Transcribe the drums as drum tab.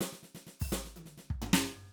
HH |-----op-x-------|
SD |oggog-og-gg--o--|
T1 |--------o-------|
FT |------------o---|
BD |-----o-----o----|